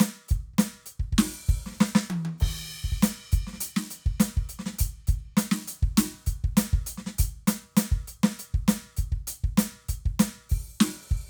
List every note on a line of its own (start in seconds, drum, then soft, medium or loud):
0.01 closed hi-hat loud
0.01 snare loud
0.29 closed hi-hat medium
0.29 kick medium
0.54 kick soft
0.59 closed hi-hat loud
0.59 snare loud
0.86 closed hi-hat medium
1.00 kick soft
1.13 kick medium
1.19 open hi-hat loud
1.19 snare loud
1.48 open hi-hat medium
1.48 kick medium
1.67 snare soft
1.72 snare soft
1.81 snare loud
1.86 hi-hat pedal medium
1.96 snare loud
2.10 high tom loud
2.25 high tom medium
2.38 hi-hat pedal soft
2.38 crash loud
2.42 kick medium
2.70 closed hi-hat soft
2.84 kick soft
2.92 kick soft
3.03 closed hi-hat loud
3.03 snare loud
3.32 closed hi-hat medium
3.32 kick medium
3.47 snare soft
3.54 snare soft
3.60 closed hi-hat loud
3.60 snare soft
3.77 snare medium
3.91 closed hi-hat medium
4.06 kick medium
4.20 closed hi-hat loud
4.20 snare loud
4.37 kick medium
4.49 closed hi-hat medium
4.59 snare medium
4.66 snare medium
4.73 snare soft
4.79 closed hi-hat loud
4.79 kick medium
5.08 closed hi-hat medium
5.08 kick medium
5.37 closed hi-hat loud
5.37 snare loud
5.52 snare loud
5.68 closed hi-hat loud
5.83 kick medium
5.98 closed hi-hat loud
5.98 snare loud
6.27 closed hi-hat medium
6.27 kick medium
6.44 kick medium
6.57 closed hi-hat loud
6.57 snare loud
6.73 kick medium
6.87 closed hi-hat loud
6.98 snare soft
7.07 snare medium
7.19 closed hi-hat loud
7.19 kick medium
7.48 closed hi-hat loud
7.48 snare loud
7.77 closed hi-hat loud
7.77 snare loud
7.92 kick medium
8.08 closed hi-hat medium
8.24 snare loud
8.39 closed hi-hat medium
8.54 kick medium
8.68 closed hi-hat loud
8.68 snare loud
8.97 closed hi-hat medium
8.97 kick medium
9.12 kick medium
9.28 closed hi-hat loud
9.44 kick medium
9.58 closed hi-hat loud
9.58 snare loud
9.89 closed hi-hat medium
9.89 kick soft
10.06 kick medium
10.20 closed hi-hat loud
10.20 snare loud
10.50 open hi-hat medium
10.50 kick medium
10.81 open hi-hat medium
10.81 snare loud
11.11 kick medium